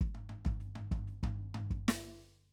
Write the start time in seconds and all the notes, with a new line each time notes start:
0.01 kick
0.14 floor tom
0.29 floor tom
0.45 kick, floor tom
0.60 snare
0.75 floor tom
0.91 kick, floor tom
1.07 snare
1.23 kick, floor tom
1.54 floor tom
1.71 kick
1.88 snare